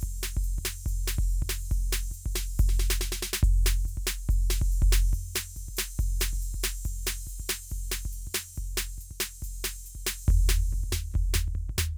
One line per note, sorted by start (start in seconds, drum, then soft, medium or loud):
0.01 open hi-hat medium
0.01 kick medium
0.01 snare soft
0.23 open hi-hat medium
0.23 snare loud
0.37 kick medium
0.44 open hi-hat medium
0.59 kick medium
0.65 open hi-hat loud
0.65 snare loud
0.86 open hi-hat medium
0.86 kick medium
1.08 open hi-hat loud
1.08 snare loud
1.19 kick medium
1.19 snare soft
1.30 open hi-hat soft
1.43 kick medium
1.50 open hi-hat loud
1.50 snare loud
1.72 open hi-hat medium
1.72 kick medium
1.93 open hi-hat loud
1.93 snare loud
2.12 open hi-hat medium
2.12 kick soft
2.26 kick medium
2.36 open hi-hat loud
2.36 snare loud
2.59 open hi-hat loud
2.59 kick loud
2.69 snare medium
2.80 snare loud
2.91 snare loud
3.01 snare loud
3.12 snare loud
3.23 snare loud
3.34 snare loud
3.43 kick loud
3.43 crash loud
3.66 open hi-hat medium
3.66 snare loud
3.86 open hi-hat medium
3.86 kick soft
3.98 kick medium
4.07 open hi-hat medium
4.07 snare loud
4.27 open hi-hat medium
4.27 kick loud
4.27 snare soft
4.51 open hi-hat loud
4.51 snare loud
4.62 kick medium
4.62 snare soft
4.72 open hi-hat medium
4.82 kick loud
4.93 open hi-hat loud
4.93 snare loud
5.07 snare soft
5.13 open hi-hat medium
5.13 kick medium
5.36 open hi-hat loud
5.36 snare loud
5.57 open hi-hat medium
5.57 kick soft
5.69 kick soft
5.77 open hi-hat loud
5.77 snare loud
5.98 open hi-hat medium
5.98 kick medium
5.98 snare soft
6.21 open hi-hat loud
6.21 snare loud
6.34 kick soft
6.34 snare soft
6.42 open hi-hat medium
6.55 kick soft
6.64 open hi-hat loud
6.64 snare loud
6.85 open hi-hat medium
6.85 kick medium
7.07 open hi-hat loud
7.07 snare loud
7.27 open hi-hat medium
7.27 kick soft
7.40 kick soft
7.49 open hi-hat loud
7.49 snare loud
7.70 open hi-hat medium
7.70 kick medium
7.92 open hi-hat loud
7.92 snare loud
8.06 kick medium
8.06 snare soft
8.13 open hi-hat medium
8.27 kick soft
8.34 open hi-hat loud
8.34 snare loud
8.56 open hi-hat medium
8.56 kick medium
8.78 open hi-hat loud
8.78 snare loud
8.98 open hi-hat medium
8.98 kick soft
8.98 snare soft
9.11 kick soft
9.21 open hi-hat loud
9.21 snare loud
9.43 open hi-hat medium
9.43 kick medium
9.65 open hi-hat loud
9.65 snare loud
9.85 open hi-hat medium
9.85 snare soft
9.96 kick soft
10.07 open hi-hat loud
10.07 snare loud
10.28 kick loud
10.28 snare soft
10.28 floor tom loud
10.49 snare loud
10.49 floor tom loud
10.73 kick soft
10.73 floor tom medium
10.93 snare loud
10.93 floor tom loud
11.12 kick medium
11.12 snare soft
11.12 floor tom medium
11.34 snare loud
11.34 floor tom loud
11.48 kick soft
11.56 floor tom medium
11.70 kick medium
11.78 snare loud
11.78 floor tom loud